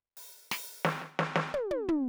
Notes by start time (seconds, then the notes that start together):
0.17 open hi-hat
0.51 open hi-hat, snare
0.85 snare
1.01 snare
1.19 snare
1.36 snare
1.47 hi-hat pedal
1.53 high tom
1.71 high tom
1.88 floor tom